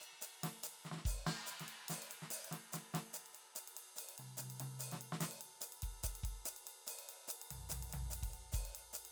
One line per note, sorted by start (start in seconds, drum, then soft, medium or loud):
0.01 hi-hat pedal soft
0.01 ride soft
0.12 snare soft
0.22 hi-hat pedal medium
0.22 ride medium
0.42 snare medium
0.42 hi-hat pedal soft
0.42 ride loud
0.64 hi-hat pedal loud
0.64 ride medium
0.84 snare soft
0.84 hi-hat pedal soft
0.92 snare soft
0.96 snare soft
1.06 kick medium
1.06 hi-hat pedal medium
1.27 snare medium
1.27 hi-hat pedal soft
1.27 ride medium
1.47 hi-hat pedal medium
1.47 ride medium
1.60 snare soft
1.60 ride medium
1.67 hi-hat pedal soft
1.67 ride medium
1.89 snare soft
1.89 hi-hat pedal loud
1.89 ride medium
2.03 ride medium
2.10 hi-hat pedal soft
2.10 ride medium
2.22 snare soft
2.31 hi-hat pedal loud
2.31 ride medium
2.45 ride medium
2.51 snare soft
2.51 hi-hat pedal soft
2.51 ride medium
2.73 snare soft
2.73 hi-hat pedal medium
2.73 ride medium
2.93 snare medium
2.93 hi-hat pedal soft
2.93 ride medium
3.14 hi-hat pedal loud
3.14 ride medium
3.27 ride soft
3.33 hi-hat pedal soft
3.33 ride medium
3.56 hi-hat pedal medium
3.56 ride medium
3.68 ride medium
3.75 hi-hat pedal soft
3.75 ride medium
3.96 hi-hat pedal medium
3.96 ride medium
4.09 ride medium
4.14 hi-hat pedal soft
4.14 ride medium
4.20 high tom soft
4.37 hi-hat pedal loud
4.37 high tom soft
4.37 ride medium
4.51 ride medium
4.57 hi-hat pedal soft
4.57 high tom medium
4.57 ride medium
4.80 hi-hat pedal medium
4.80 ride medium
4.92 snare soft
4.92 ride medium
4.98 hi-hat pedal soft
4.98 ride medium
5.13 snare medium
5.21 snare medium
5.21 hi-hat pedal medium
5.21 ride medium
5.32 ride medium
5.40 hi-hat pedal soft
5.40 ride medium
5.61 hi-hat pedal medium
5.61 ride medium
5.73 ride medium
5.83 kick soft
5.83 ride medium
6.04 kick soft
6.04 hi-hat pedal loud
6.04 ride medium
6.16 ride medium
6.23 kick soft
6.23 hi-hat pedal soft
6.23 ride medium
6.46 hi-hat pedal loud
6.46 ride medium
6.57 ride medium
6.65 hi-hat pedal soft
6.65 ride medium
6.87 hi-hat pedal medium
6.87 ride loud
6.99 ride medium
7.09 ride medium
7.28 hi-hat pedal loud
7.28 ride medium
7.42 ride medium
7.47 hi-hat pedal soft
7.47 ride medium
7.51 floor tom soft
7.70 floor tom medium
7.70 hi-hat pedal loud
7.70 ride medium
7.83 ride medium
7.90 hi-hat pedal soft
7.90 ride medium
7.94 floor tom medium
8.11 hi-hat pedal medium
8.11 ride medium
8.23 kick soft
8.23 ride medium
8.30 hi-hat pedal soft
8.34 ride medium
8.52 kick medium
8.52 hi-hat pedal medium
8.52 ride medium
8.66 ride medium
8.75 ride medium
8.94 hi-hat pedal loud
8.94 ride medium
9.06 ride medium